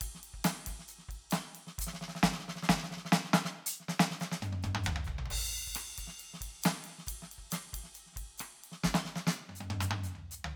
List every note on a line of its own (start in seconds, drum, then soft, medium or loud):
0.01 kick soft
0.01 hi-hat pedal medium
0.01 ride loud
0.08 kick soft
0.11 kick soft
0.11 snare soft
0.23 ride medium
0.34 kick soft
0.39 kick soft
0.44 snare loud
0.44 hi-hat pedal medium
0.44 ride loud
0.67 kick soft
0.67 ride medium
0.74 kick soft
0.79 snare soft
0.88 hi-hat pedal medium
0.88 ride soft
0.99 snare soft
1.09 kick soft
1.09 ride soft
1.15 kick soft
1.30 snare medium
1.30 hi-hat pedal medium
1.30 ride medium
1.55 ride medium
1.67 snare soft
1.78 kick medium
1.78 hi-hat pedal loud
1.78 ride medium
1.86 kick soft
1.86 snare medium
1.94 snare medium
2.01 snare medium
2.08 snare medium
2.15 snare medium
2.23 kick soft
2.23 snare loud
2.32 snare medium
2.39 snare medium
2.48 snare medium
2.56 snare medium
2.63 snare medium
2.69 kick soft
2.69 snare loud
2.77 snare medium
2.83 snare medium
2.91 snare medium
2.97 snare medium
3.05 snare medium
3.12 snare loud
3.24 snare soft
3.33 snare loud
3.45 snare medium
3.56 cross-stick soft
3.66 closed hi-hat loud
3.80 snare soft
3.89 snare medium
3.94 hi-hat pedal soft
4.00 snare loud
4.11 snare medium
4.20 snare medium
4.20 hi-hat pedal medium
4.32 snare medium
4.40 kick soft
4.40 hi-hat pedal soft
4.40 high tom loud
4.53 high tom medium
4.63 kick soft
4.63 hi-hat pedal soft
4.63 high tom loud
4.69 kick soft
4.75 high tom loud
4.84 kick soft
4.84 hi-hat pedal medium
4.84 mid tom loud
4.92 kick soft
4.96 mid tom medium
5.04 kick soft
5.04 floor tom medium
5.04 hi-hat pedal soft
5.18 floor tom medium
5.26 floor tom medium
5.30 kick medium
5.30 hi-hat pedal soft
5.30 crash loud
5.44 kick soft
5.67 kick soft
5.75 cross-stick medium
5.75 hi-hat pedal medium
5.75 ride loud
5.98 kick soft
5.98 ride medium
6.04 kick soft
6.04 snare soft
6.19 hi-hat pedal soft
6.19 ride medium
6.34 snare soft
6.41 kick soft
6.41 ride medium
6.47 kick soft
6.62 snare loud
6.62 hi-hat pedal medium
6.62 ride loud
6.84 ride medium
6.99 snare soft
7.07 kick soft
7.07 hi-hat pedal medium
7.07 ride loud
7.14 kick soft
7.22 snare soft
7.32 ride medium
7.38 kick soft
7.43 kick soft
7.51 snare medium
7.51 hi-hat pedal medium
7.51 ride loud
7.73 kick soft
7.73 ride medium
7.80 kick soft
7.80 snare soft
7.94 hi-hat pedal medium
7.94 ride medium
8.06 snare soft
8.13 kick soft
8.13 snare soft
8.17 ride medium
8.22 kick soft
8.38 cross-stick medium
8.38 hi-hat pedal medium
8.38 ride loud
8.64 ride medium
8.72 snare soft
8.84 kick soft
8.84 snare loud
8.84 hi-hat pedal medium
8.92 kick soft
8.92 snare loud
9.05 snare medium
9.16 snare medium
9.27 snare loud
9.27 hi-hat pedal medium
9.40 cross-stick soft
9.49 high tom medium
9.55 hi-hat pedal medium
9.61 high tom medium
9.70 high tom loud
9.81 hi-hat pedal loud
9.81 high tom loud
9.91 high tom loud
10.03 hi-hat pedal medium
10.03 high tom soft
10.15 mid tom medium
10.30 hi-hat pedal loud
10.30 mid tom soft
10.45 mid tom loud